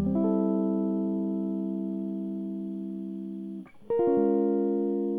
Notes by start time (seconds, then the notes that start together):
0.00 G3
0.07 C4
0.16 E4
0.24 A4
3.90 A#4
3.99 F4
4.08 C#4